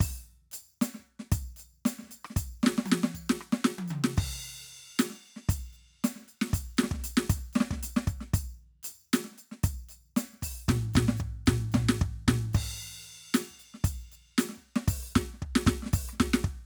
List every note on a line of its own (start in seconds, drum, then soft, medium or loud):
0.01 kick loud
0.01 percussion loud
0.52 percussion medium
0.54 percussion loud
0.82 snare loud
0.82 percussion loud
0.95 snare soft
0.98 kick soft
0.98 snare soft
1.20 snare medium
1.32 kick loud
1.32 percussion loud
1.57 percussion medium
1.60 percussion medium
1.86 snare loud
1.86 percussion loud
1.99 snare soft
2.03 kick soft
2.03 snare soft
2.06 snare soft
2.08 snare soft
2.10 snare soft
2.10 percussion medium
2.25 cross-stick medium
2.31 snare soft
2.37 kick loud
2.37 percussion loud
2.61 snare loud
2.61 percussion soft
2.67 snare loud
2.78 snare loud
2.86 high tom loud
2.86 percussion medium
2.92 snare loud
3.04 snare loud
3.15 kick soft
3.15 percussion medium
3.30 snare loud
3.41 cross-stick medium
3.53 snare loud
3.65 snare loud
3.79 high tom loud
3.88 mid tom loud
3.88 percussion medium
4.04 snare loud
4.17 kick loud
4.17 crash loud
5.00 snare loud
5.00 percussion loud
5.11 snare soft
5.14 snare soft
5.26 percussion soft
5.37 snare soft
5.49 kick loud
5.49 percussion loud
5.73 percussion soft
6.05 snare loud
6.05 percussion loud
6.16 snare soft
6.19 snare soft
6.21 snare soft
6.23 snare soft
6.29 percussion soft
6.42 snare loud
6.50 kick loud
6.50 snare soft
6.55 percussion loud
6.78 snare loud
6.78 percussion medium
6.84 snare medium
6.92 kick loud
6.92 snare medium
6.99 snare soft
7.03 snare soft
7.03 percussion loud
7.18 snare loud
7.30 kick loud
7.30 percussion loud
7.37 snare soft
7.53 snare loud
7.53 percussion medium
7.61 snare loud
7.71 kick medium
7.71 snare medium
7.77 snare soft
7.83 snare soft
7.83 percussion loud
7.97 snare loud
8.08 kick loud
8.08 percussion medium
8.21 snare medium
8.34 kick loud
8.34 percussion loud
8.84 percussion medium
8.84 percussion loud
9.14 snare loud
9.14 percussion loud
9.25 snare soft
9.28 snare soft
9.32 snare soft
9.35 snare soft
9.35 percussion medium
9.52 snare medium
9.64 kick loud
9.64 percussion loud
9.89 percussion medium
9.92 percussion medium
10.17 snare loud
10.17 percussion loud
10.34 snare soft
10.42 kick medium
10.42 percussion soft
10.44 percussion loud
10.69 kick loud
10.69 snare loud
10.69 floor tom loud
10.69 percussion medium
10.94 kick loud
10.94 snare loud
10.94 floor tom loud
10.94 percussion medium
11.09 snare loud
11.18 kick medium
11.18 percussion medium
11.47 kick loud
11.47 snare loud
11.47 floor tom loud
11.47 percussion medium
11.72 kick medium
11.72 snare loud
11.72 floor tom loud
11.72 percussion medium
11.89 snare loud
12.02 kick loud
12.28 kick loud
12.28 snare loud
12.28 floor tom loud
12.52 kick soft
12.52 percussion medium
12.55 kick loud
12.55 crash loud
13.03 percussion soft
13.35 snare loud
13.35 percussion loud
13.51 kick soft
13.60 percussion soft
13.75 snare soft
13.85 kick loud
13.85 percussion loud
14.12 percussion medium
14.39 snare loud
14.39 percussion loud
14.49 snare medium
14.53 snare soft
14.56 kick soft
14.56 snare soft
14.76 snare loud
14.88 kick loud
14.88 percussion loud
15.03 cross-stick soft
15.10 percussion soft
15.16 kick loud
15.16 snare loud
15.34 snare soft
15.43 kick medium
15.56 snare loud
15.67 kick loud
15.67 snare loud
15.83 snare medium
15.86 snare medium
15.94 kick loud
15.94 percussion loud
16.09 cross-stick soft
16.09 percussion soft
16.13 snare soft
16.16 snare soft
16.20 kick loud
16.20 snare loud
16.34 snare loud
16.45 kick loud